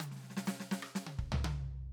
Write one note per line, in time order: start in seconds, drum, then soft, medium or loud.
0.02 hi-hat pedal medium
0.02 high tom loud
0.11 snare soft
0.15 snare soft
0.19 snare soft
0.23 snare soft
0.30 snare soft
0.37 snare medium
0.45 snare medium
0.45 hi-hat pedal medium
0.60 snare medium
0.71 snare medium
0.82 cross-stick medium
0.95 snare medium
1.06 high tom medium
1.19 kick medium
1.32 floor tom loud
1.44 high tom loud